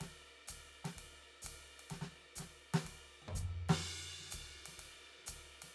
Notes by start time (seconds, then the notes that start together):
0.01 kick, snare, ride
0.11 snare
0.48 kick, hi-hat pedal, ride
0.85 snare, ride
0.97 kick, ride
1.43 kick, hi-hat pedal
1.47 ride
1.80 ride
1.89 kick, snare, hi-hat pedal, ride
2.02 snare
2.36 kick, snare, hi-hat pedal, ride
2.74 snare, ride
2.85 kick, ride
3.22 high tom
3.29 floor tom
3.35 kick, hi-hat pedal
3.69 snare, crash
3.82 hi-hat pedal
4.20 snare
4.25 snare
4.31 kick, hi-hat pedal, ride
4.66 snare, ride
4.79 kick, ride
5.18 snare
5.21 snare
5.24 snare, hi-hat pedal
5.29 kick, ride
5.62 snare, ride